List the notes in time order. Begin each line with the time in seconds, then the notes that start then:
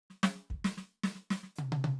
0.10 snare
0.23 snare
0.35 snare
0.50 kick, snare
0.64 snare
0.77 snare
1.04 snare
1.15 snare
1.30 snare
1.43 snare
1.56 hi-hat pedal, high tom
1.72 high tom
1.84 high tom